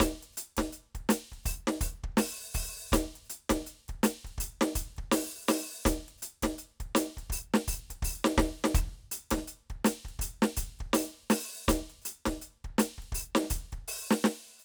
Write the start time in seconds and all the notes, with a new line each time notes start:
0.01 open hi-hat, kick, snare, hi-hat pedal
0.23 closed hi-hat
0.33 hi-hat pedal
0.38 closed hi-hat
0.58 kick, snare, closed hi-hat
0.73 closed hi-hat
0.96 kick, closed hi-hat
1.10 closed hi-hat, snare
1.33 kick, closed hi-hat
1.44 open hi-hat, kick, hi-hat pedal
1.68 snare
1.82 open hi-hat, kick, hi-hat pedal
2.05 kick
2.13 kick
2.18 open hi-hat, snare
2.55 open hi-hat, kick
2.93 closed hi-hat, kick, snare, hi-hat pedal
3.16 closed hi-hat
3.25 hi-hat pedal
3.31 closed hi-hat
3.50 kick, snare, closed hi-hat
3.67 closed hi-hat
3.89 kick, closed hi-hat
4.04 closed hi-hat, snare
4.25 kick, closed hi-hat
4.39 closed hi-hat, kick
4.62 snare
4.76 closed hi-hat, kick
4.98 kick, closed hi-hat
5.12 open hi-hat, snare
5.49 open hi-hat, snare
5.86 closed hi-hat, kick, snare, hi-hat pedal
6.09 closed hi-hat
6.19 hi-hat pedal
6.23 closed hi-hat
6.43 kick, snare, closed hi-hat
6.59 closed hi-hat
6.81 kick, closed hi-hat
6.96 closed hi-hat, snare
7.18 kick, closed hi-hat
7.31 open hi-hat, kick
7.55 snare
7.69 open hi-hat, kick
7.91 kick, closed hi-hat
8.03 open hi-hat, kick, hi-hat pedal
8.25 snare
8.39 kick, snare
8.65 snare
8.75 open hi-hat, kick, cross-stick, hi-hat pedal
9.12 closed hi-hat
9.32 kick, snare, closed hi-hat
9.38 snare
9.48 closed hi-hat
9.71 kick, closed hi-hat
9.86 closed hi-hat, snare
10.06 kick, closed hi-hat
10.20 closed hi-hat, kick
10.43 snare
10.58 closed hi-hat, kick
10.80 kick, closed hi-hat
10.94 open hi-hat, snare, hi-hat pedal
11.24 kick
11.31 open hi-hat, snare
11.66 closed hi-hat, kick, snare, hi-hat pedal
11.91 closed hi-hat
12.02 closed hi-hat, hi-hat pedal
12.27 kick, snare, closed hi-hat
12.42 closed hi-hat
12.65 kick, closed hi-hat
12.79 closed hi-hat, snare
12.99 kick
13.03 closed hi-hat
13.13 open hi-hat, kick
13.18 hi-hat pedal
13.36 snare
13.44 snare
13.51 closed hi-hat, kick
13.73 kick, closed hi-hat
13.89 open hi-hat
14.12 snare
14.25 snare
14.60 hi-hat pedal